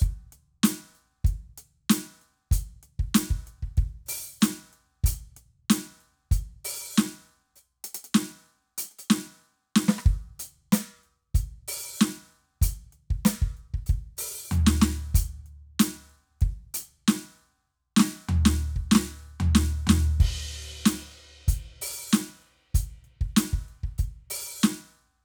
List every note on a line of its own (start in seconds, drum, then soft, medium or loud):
0.02 kick medium
0.02 hi-hat pedal medium
0.33 closed hi-hat soft
0.64 closed hi-hat loud
0.64 snare loud
0.95 closed hi-hat soft
1.25 kick medium
1.25 closed hi-hat medium
1.59 closed hi-hat medium
1.91 closed hi-hat loud
1.91 snare loud
2.22 closed hi-hat soft
2.52 closed hi-hat loud
2.52 kick medium
2.84 closed hi-hat soft
3.00 kick medium
3.15 closed hi-hat loud
3.15 snare loud
3.31 kick medium
3.48 closed hi-hat soft
3.63 kick soft
3.78 kick medium
3.78 closed hi-hat soft
4.07 open hi-hat loud
4.07 hi-hat pedal soft
4.42 closed hi-hat loud
4.42 snare loud
4.42 hi-hat pedal medium
4.74 closed hi-hat soft
5.05 closed hi-hat loud
5.05 kick medium
5.37 closed hi-hat soft
5.71 closed hi-hat loud
5.71 snare loud
6.01 closed hi-hat soft
6.32 closed hi-hat medium
6.32 kick medium
6.66 open hi-hat loud
6.99 snare loud
6.99 hi-hat pedal medium
7.57 hi-hat pedal soft
7.85 closed hi-hat loud
7.95 closed hi-hat loud
8.05 closed hi-hat medium
8.15 snare loud
8.79 closed hi-hat loud
8.92 closed hi-hat soft
9.00 closed hi-hat medium
9.11 snare loud
9.77 snare loud
9.89 snare loud
9.99 cross-stick medium
10.07 kick medium
10.40 closed hi-hat medium
10.73 closed hi-hat loud
10.73 snare loud
11.04 closed hi-hat soft
11.35 closed hi-hat medium
11.35 kick medium
11.69 open hi-hat loud
12.01 snare loud
12.01 hi-hat pedal medium
12.62 closed hi-hat loud
12.62 kick medium
12.93 closed hi-hat soft
13.11 kick medium
13.26 closed hi-hat loud
13.26 snare loud
13.43 kick medium
13.58 closed hi-hat soft
13.75 kick soft
13.87 closed hi-hat soft
13.87 kick medium
14.18 open hi-hat loud
14.18 hi-hat pedal soft
14.52 floor tom loud
14.52 hi-hat pedal medium
14.68 snare loud
14.83 snare loud
15.15 closed hi-hat loud
15.15 kick medium
15.47 closed hi-hat soft
15.80 closed hi-hat loud
15.80 snare loud
16.10 closed hi-hat soft
16.42 kick medium
16.42 closed hi-hat soft
16.75 open hi-hat loud
17.09 snare loud
17.09 hi-hat pedal medium
17.09 open hi-hat medium
17.97 snare loud
18.00 snare loud
18.30 floor tom loud
18.46 snare loud
18.77 kick medium
18.92 snare loud
18.96 snare loud
19.41 floor tom loud
19.56 snare loud
19.88 snare loud
19.88 floor tom loud
20.21 kick medium
20.21 ride loud
20.86 closed hi-hat loud
20.86 snare loud
21.49 closed hi-hat medium
21.49 kick medium
21.82 open hi-hat loud
22.13 closed hi-hat medium
22.13 snare loud
22.13 hi-hat pedal medium
22.43 closed hi-hat soft
22.75 closed hi-hat loud
22.75 kick medium
23.05 closed hi-hat soft
23.22 kick medium
23.37 closed hi-hat loud
23.37 snare loud
23.54 kick medium
23.69 closed hi-hat soft
23.84 kick soft
23.99 closed hi-hat medium
23.99 kick medium
24.31 open hi-hat loud
24.64 open hi-hat medium
24.64 snare loud
24.64 hi-hat pedal medium